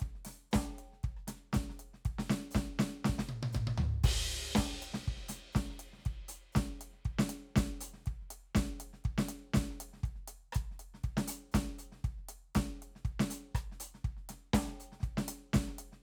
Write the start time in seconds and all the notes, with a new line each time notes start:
0.01 kick, closed hi-hat
0.15 snare
0.25 snare, open hi-hat
0.52 kick, snare, closed hi-hat, hi-hat pedal
0.69 snare
0.79 closed hi-hat
0.93 snare
1.04 kick, closed hi-hat
1.17 cross-stick
1.28 snare, open hi-hat
1.53 kick, snare, closed hi-hat, hi-hat pedal
1.70 snare
1.80 closed hi-hat
1.94 snare
2.05 kick, closed hi-hat
2.19 snare
2.30 snare
2.43 snare
2.51 snare, hi-hat pedal
2.56 kick
2.66 snare
2.79 snare
2.94 snare
3.05 snare
3.09 kick
3.19 snare
3.29 high tom
3.43 open hi-hat, high tom
3.53 kick, hi-hat pedal, high tom
3.67 closed hi-hat, high tom
3.78 floor tom
4.04 kick, crash, ride
4.55 kick, snare
4.73 snare
4.83 closed hi-hat
4.94 snare
5.05 kick, closed hi-hat
5.17 snare
5.29 open hi-hat, snare
5.53 kick, snare, closed hi-hat, hi-hat pedal
5.70 snare
5.80 closed hi-hat
5.93 snare
5.98 snare
6.02 snare, closed hi-hat
6.06 kick
6.29 open hi-hat
6.53 snare, closed hi-hat, hi-hat pedal
6.57 kick
6.81 closed hi-hat
6.94 snare
7.05 kick, closed hi-hat
7.19 snare
7.30 closed hi-hat
7.56 kick, snare, closed hi-hat
7.74 snare
7.81 closed hi-hat
7.94 snare
7.97 snare
8.01 snare
8.06 kick, closed hi-hat
8.21 snare
8.31 closed hi-hat
8.55 kick, snare, closed hi-hat
8.80 closed hi-hat
8.93 snare
9.04 kick, closed hi-hat
9.18 snare
9.29 closed hi-hat
9.54 kick, snare, closed hi-hat
9.71 snare
9.81 closed hi-hat
9.93 snare
9.96 snare
10.04 kick, closed hi-hat
10.15 snare
10.28 closed hi-hat
10.53 kick, cross-stick, closed hi-hat
10.71 snare
10.80 closed hi-hat
10.94 snare
11.04 kick, closed hi-hat
11.17 snare
11.28 open hi-hat
11.52 kick, snare, closed hi-hat, hi-hat pedal
11.69 snare
11.79 closed hi-hat
11.92 snare
11.95 snare
11.99 snare
12.05 kick, closed hi-hat
12.18 snare
12.29 closed hi-hat
12.55 kick, snare, closed hi-hat
12.82 closed hi-hat
12.96 snare
13.05 kick, closed hi-hat
13.20 snare
13.31 closed hi-hat
13.55 kick, cross-stick, closed hi-hat
13.72 snare
13.80 closed hi-hat
13.94 snare
14.05 kick, closed hi-hat
14.17 snare
14.29 snare, closed hi-hat
14.54 kick, snare, closed hi-hat
14.68 snare
14.80 closed hi-hat
14.92 snare
15.00 kick, snare
15.04 closed hi-hat
15.18 snare
15.29 closed hi-hat
15.54 kick, snare, closed hi-hat
15.68 snare
15.79 closed hi-hat
15.93 snare